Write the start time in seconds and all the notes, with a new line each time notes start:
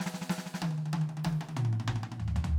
0.00 snare
0.06 snare
0.14 snare
0.21 snare
0.29 snare
0.38 snare
0.46 snare
0.54 snare
0.62 high tom
0.71 high tom
0.78 high tom
0.85 high tom
0.93 high tom
1.01 high tom
1.09 high tom
1.17 high tom
1.24 kick, crash, high tom
1.33 high tom
1.41 high tom
1.49 high tom
1.56 mid tom
1.65 mid tom
1.72 mid tom
1.80 mid tom
1.88 kick, mid tom
1.96 mid tom
2.03 mid tom
2.12 mid tom
2.19 floor tom
2.28 floor tom
2.36 floor tom
2.44 floor tom